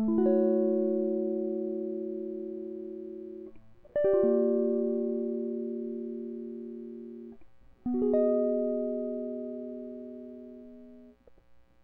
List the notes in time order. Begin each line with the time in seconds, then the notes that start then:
0.00 A3
0.09 E4
0.19 F#4
0.26 C#5
3.96 D5
4.05 G4
4.14 F4
4.25 A#3
7.87 B3
7.95 F#4
8.02 G#4
8.14 D#5